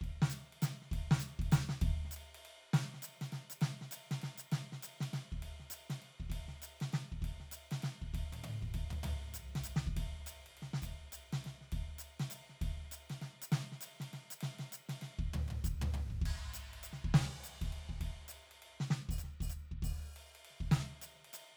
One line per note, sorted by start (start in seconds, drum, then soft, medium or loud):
0.01 kick soft
0.01 ride soft
0.22 snare medium
0.30 ride soft
0.30 percussion medium
0.52 ride soft
0.62 snare medium
0.62 ride soft
0.62 percussion medium
0.82 snare soft
0.91 kick medium
0.91 ride medium
1.11 snare medium
1.20 percussion medium
1.24 ride soft
1.39 kick medium
1.39 ride soft
1.52 snare loud
1.52 percussion medium
1.69 snare medium
1.81 kick medium
1.81 ride medium
2.05 snare soft
2.11 percussion medium
2.16 ride soft
2.35 ride medium
2.45 ride soft
2.73 snare medium
2.73 ride medium
2.94 snare soft
3.02 ride soft
3.02 percussion medium
3.21 snare soft
3.21 ride soft
3.21 percussion soft
3.32 snare soft
3.32 ride soft
3.50 percussion medium
3.61 snare medium
3.61 ride medium
3.81 snare soft
3.91 ride medium
3.91 percussion medium
4.11 snare medium
4.11 ride soft
4.22 snare soft
4.22 ride soft
4.38 percussion medium
4.52 snare medium
4.52 ride medium
4.72 snare soft
4.83 ride medium
4.83 percussion medium
5.00 snare medium
5.00 ride soft
5.13 snare medium
5.13 ride soft
5.32 kick soft
5.42 kick soft
5.42 ride medium
5.60 snare soft
5.70 ride soft
5.70 percussion medium
5.90 snare soft
5.90 ride soft
6.02 ride soft
6.20 kick soft
6.30 kick soft
6.30 ride medium
6.48 snare soft
6.62 ride soft
6.62 percussion medium
6.80 snare medium
6.80 ride soft
6.93 snare medium
6.93 ride soft
7.12 kick soft
7.22 kick soft
7.22 ride soft
7.40 snare soft
7.52 ride soft
7.52 percussion medium
7.71 snare medium
7.71 ride medium
7.82 snare medium
7.82 ride soft
8.02 kick soft
8.14 kick soft
8.14 ride medium
8.32 high tom medium
8.32 ride soft
8.44 high tom medium
8.44 ride soft
8.62 kick soft
8.74 kick soft
8.74 ride medium
8.90 floor tom medium
8.90 ride soft
9.03 floor tom medium
9.03 ride medium
9.34 ride soft
9.34 percussion medium
9.55 snare medium
9.55 ride soft
9.64 ride soft
9.64 percussion medium
9.76 snare medium
9.87 kick soft
9.96 kick medium
9.96 ride medium
10.26 ride medium
10.26 percussion medium
10.46 ride soft
10.57 ride soft
10.62 snare soft
10.73 snare medium
10.82 kick soft
10.82 ride medium
10.82 percussion medium
11.12 ride soft
11.12 percussion medium
11.33 snare medium
11.33 ride soft
11.44 snare soft
11.44 ride soft
11.61 snare soft
11.72 kick soft
11.72 ride soft
11.98 ride soft
11.98 percussion medium
12.20 snare medium
12.20 ride soft
12.30 ride medium
12.30 percussion medium
12.49 snare soft
12.61 kick medium
12.61 ride medium
12.80 snare soft
12.91 ride soft
12.91 percussion medium
13.10 snare soft
13.10 ride soft
13.21 snare soft
13.21 ride soft
13.42 percussion medium
13.52 snare medium
13.52 ride medium
13.72 snare soft
13.81 ride medium
13.81 percussion medium
14.00 snare soft
14.00 ride soft
14.13 snare soft
14.13 ride soft
14.30 percussion medium
14.41 snare medium
14.41 ride medium
14.59 snare soft
14.59 ride soft
14.72 percussion medium
14.89 snare soft
14.89 ride medium
15.01 snare soft
15.01 ride soft
15.19 kick medium
15.33 floor tom medium
15.33 high tom medium
15.48 floor tom medium
15.48 high tom soft
15.64 kick medium
15.64 percussion medium
15.81 floor tom loud
15.81 high tom medium
15.94 floor tom medium
15.94 high tom soft
16.10 kick soft
16.21 kick medium
16.21 ride medium
16.26 crash medium
16.54 ride soft
16.54 percussion medium
16.73 ride soft
16.83 ride soft
16.83 percussion medium
16.93 snare soft
17.04 kick medium
17.14 snare loud
17.14 crash medium
17.44 ride soft
17.44 percussion medium
17.54 snare soft
17.61 kick soft
17.61 ride soft
17.72 ride soft
17.85 kick soft
17.85 snare soft
18.01 kick soft
18.01 ride medium
18.28 ride soft
18.28 percussion medium
18.51 ride soft
18.62 ride soft
18.80 snare medium
18.90 snare medium
19.09 kick medium
19.09 percussion medium
19.18 percussion medium
19.23 snare soft
19.40 kick soft
19.40 percussion medium
19.50 percussion medium
19.55 snare soft
19.71 kick soft
19.82 kick medium
19.82 percussion medium
20.16 ride soft
20.35 ride soft
20.45 ride soft
20.50 snare soft
20.60 kick soft
20.71 snare medium
20.71 ride medium
20.71 percussion soft
21.02 ride soft
21.02 percussion medium
21.14 snare soft
21.25 ride soft
21.33 ride medium
21.33 percussion medium
21.51 snare soft